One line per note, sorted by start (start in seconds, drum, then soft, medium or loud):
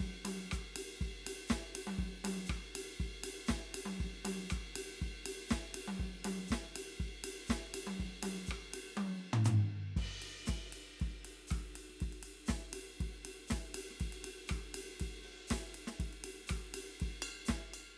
0.01 kick soft
0.26 closed hi-hat soft
0.26 high tom medium
0.26 ride loud
0.52 kick soft
0.52 cross-stick medium
0.52 hi-hat pedal medium
0.77 ride loud
1.02 kick soft
1.27 ride loud
1.49 kick soft
1.49 snare medium
1.49 hi-hat pedal medium
1.76 ride loud
1.88 closed hi-hat soft
1.88 high tom medium
1.99 kick soft
2.25 high tom loud
2.25 ride loud
2.47 kick soft
2.47 cross-stick medium
2.47 hi-hat pedal medium
2.76 ride loud
3.01 kick soft
3.24 ride loud
3.48 kick soft
3.48 snare medium
3.48 hi-hat pedal medium
3.58 snare soft
3.75 ride loud
3.86 high tom medium
4.01 kick soft
4.26 high tom medium
4.26 ride loud
4.50 kick soft
4.50 cross-stick medium
4.50 hi-hat pedal medium
4.76 ride loud
5.02 kick soft
5.27 ride loud
5.49 kick soft
5.49 snare medium
5.49 hi-hat pedal medium
5.75 ride loud
5.88 open hi-hat soft
5.88 high tom medium
6.00 kick soft
6.25 closed hi-hat soft
6.25 high tom medium
6.25 ride loud
6.48 kick soft
6.48 hi-hat pedal medium
6.53 snare medium
6.77 ride loud
7.01 kick soft
7.25 ride loud
7.48 kick soft
7.48 snare medium
7.48 hi-hat pedal medium
7.75 ride loud
7.88 closed hi-hat soft
7.88 high tom medium
8.01 kick soft
8.24 high tom medium
8.24 ride loud
8.47 kick soft
8.47 hi-hat pedal medium
8.52 cross-stick medium
8.74 ride loud
8.98 high tom loud
9.34 floor tom loud
9.45 floor tom loud
9.45 hi-hat pedal loud
9.97 kick medium
9.97 crash medium
10.23 ride medium
10.47 kick medium
10.47 snare medium
10.47 hi-hat pedal medium
10.47 ride medium
10.73 ride medium
11.01 kick medium
11.01 ride soft
11.26 ride medium
11.48 cross-stick medium
11.48 hi-hat pedal medium
11.52 kick medium
11.52 ride medium
11.76 ride medium
11.90 snare soft
12.01 kick soft
12.01 ride medium
12.13 ride soft
12.24 ride medium
12.47 kick soft
12.47 snare medium
12.47 hi-hat pedal medium
12.47 ride medium
12.74 ride loud
13.01 kick soft
13.01 ride medium
13.26 ride medium
13.48 snare medium
13.48 hi-hat pedal medium
13.48 ride medium
13.53 kick soft
13.75 ride loud
13.91 snare soft
14.01 kick soft
14.01 ride medium
14.13 ride medium
14.25 ride loud
14.48 kick soft
14.48 cross-stick medium
14.48 hi-hat pedal medium
14.48 ride medium
14.75 ride loud
15.01 kick soft
15.01 ride medium
15.24 ride soft
15.48 kick soft
15.48 snare medium
15.48 hi-hat pedal medium
15.48 ride loud
15.75 ride medium
15.88 snare medium
16.01 kick soft
16.01 ride medium
16.14 ride soft
16.25 ride loud
16.48 kick soft
16.48 cross-stick medium
16.48 hi-hat pedal medium
16.48 ride medium
16.75 ride loud
17.01 kick soft
17.01 ride medium
17.23 ride bell loud
17.46 snare medium
17.46 hi-hat pedal loud
17.46 ride soft
17.50 kick soft
17.74 ride bell medium